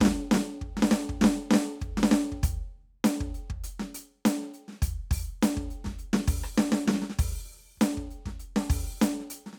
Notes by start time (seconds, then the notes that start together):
0.01 kick, snare
0.06 snare
0.32 snare, hi-hat pedal
0.35 snare
0.62 kick
0.77 snare
0.83 snare
0.91 snare, hi-hat pedal
1.10 kick
1.22 snare
1.25 snare
1.51 snare
1.54 snare
1.81 kick, hi-hat pedal
1.98 snare
2.04 snare
2.10 snare, hi-hat pedal
2.32 kick
2.43 closed hi-hat, kick, hi-hat pedal
3.05 open hi-hat, snare, hi-hat pedal
3.21 kick
3.35 closed hi-hat
3.50 kick
3.64 closed hi-hat
3.80 snare
3.95 closed hi-hat
4.26 closed hi-hat, snare
4.42 snare
4.48 snare
4.54 closed hi-hat
4.69 snare
4.73 snare
4.82 closed hi-hat, kick
5.11 open hi-hat, kick
5.42 closed hi-hat, snare, hi-hat pedal
5.57 kick, snare
5.71 closed hi-hat
5.85 kick, snare
5.88 snare
5.91 snare
5.99 closed hi-hat
6.14 snare
6.28 open hi-hat, kick
6.44 cross-stick
6.58 snare, hi-hat pedal
6.72 snare
6.87 kick, snare
6.94 snare
7.02 snare
7.10 snare
7.15 kick
7.19 open hi-hat, kick
7.78 open hi-hat, kick, snare
7.84 hi-hat pedal
7.98 kick
8.11 closed hi-hat
8.26 kick, snare
8.40 closed hi-hat
8.56 snare
8.70 open hi-hat, kick
9.01 closed hi-hat, snare, hi-hat pedal
9.21 snare
9.30 closed hi-hat
9.47 snare
9.53 snare